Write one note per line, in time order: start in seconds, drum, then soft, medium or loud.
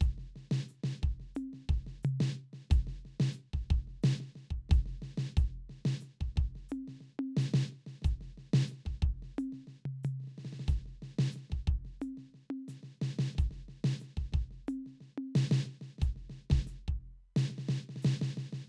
0.01 kick medium
0.01 snare soft
0.01 hi-hat pedal medium
0.18 snare soft
0.36 snare soft
0.51 snare medium
0.68 snare soft
0.68 hi-hat pedal medium
0.84 snare medium
1.03 kick medium
1.03 snare soft
1.20 snare soft
1.35 hi-hat pedal medium
1.35 high tom loud
1.53 snare soft
1.69 kick medium
1.69 snare soft
1.87 snare soft
2.03 floor tom loud
2.03 hi-hat pedal medium
2.20 snare loud
2.37 snare soft
2.53 snare soft
2.70 kick medium
2.70 snare soft
2.70 hi-hat pedal medium
2.87 snare soft
3.05 snare soft
3.20 snare loud
3.33 hi-hat pedal medium
3.39 snare soft
3.53 kick soft
3.53 snare soft
3.70 kick medium
3.70 snare soft
3.88 snare soft
4.03 snare loud
4.03 hi-hat pedal medium
4.20 snare soft
4.36 snare soft
4.51 kick soft
4.69 kick medium
4.69 snare soft
4.69 hi-hat pedal medium
4.86 snare soft
5.02 snare soft
5.18 snare medium
5.37 kick medium
5.37 snare soft
5.37 hi-hat pedal medium
5.70 snare soft
5.85 snare medium
6.01 snare soft
6.01 hi-hat pedal medium
6.21 kick soft
6.21 snare soft
6.36 kick medium
6.36 snare soft
6.55 snare soft
6.69 hi-hat pedal medium
6.69 high tom loud
6.88 snare soft
7.01 snare soft
7.19 high tom loud
7.37 snare medium
7.37 hi-hat pedal medium
7.54 snare loud
7.72 snare soft
7.87 snare soft
8.02 kick medium
8.02 snare soft
8.02 hi-hat pedal medium
8.21 snare soft
8.38 snare soft
8.54 snare loud
8.68 snare soft
8.68 hi-hat pedal medium
8.85 kick soft
8.85 snare soft
9.02 kick medium
9.09 snare soft
9.23 snare soft
9.38 hi-hat pedal medium
9.38 high tom loud
9.53 snare soft
9.67 snare soft
9.85 floor tom medium
10.04 floor tom loud
10.04 hi-hat pedal medium
10.20 snare soft
10.24 snare soft
10.28 snare soft
10.32 snare soft
10.38 snare soft
10.45 snare soft
10.53 snare soft
10.60 snare soft
10.68 kick medium
10.68 snare soft
10.68 hi-hat pedal medium
10.86 snare soft
11.02 snare soft
11.19 snare loud
11.32 snare soft
11.32 hi-hat pedal medium
11.50 kick soft
11.50 snare soft
11.67 kick medium
11.85 snare soft
12.01 hi-hat pedal medium
12.01 high tom loud
12.17 snare soft
12.34 snare soft
12.50 high tom medium
12.68 snare soft
12.68 hi-hat pedal medium
12.83 snare soft
13.02 snare medium
13.19 snare medium
13.35 kick medium
13.35 snare soft
13.35 hi-hat pedal medium
13.51 snare soft
13.68 snare soft
13.84 snare medium
14.00 snare soft
14.00 hi-hat pedal medium
14.17 kick soft
14.17 snare soft
14.33 kick medium
14.33 snare soft
14.51 snare soft
14.68 hi-hat pedal medium
14.68 high tom loud
14.86 snare soft
15.01 snare soft
15.18 high tom loud
15.35 snare loud
15.35 hi-hat pedal medium
15.51 snare loud
15.66 snare soft
15.81 snare soft
15.98 kick medium
15.98 snare soft
15.98 hi-hat pedal medium
16.16 snare soft
16.30 snare soft
16.50 kick medium
16.50 snare medium
16.67 snare soft
16.67 hi-hat pedal medium
16.88 kick soft
17.36 snare loud
17.36 hi-hat pedal medium
17.50 snare soft
17.58 snare soft
17.69 snare medium
17.89 snare soft
17.96 snare soft
18.02 snare loud
18.02 hi-hat pedal medium
18.22 snare medium
18.37 snare medium
18.53 snare medium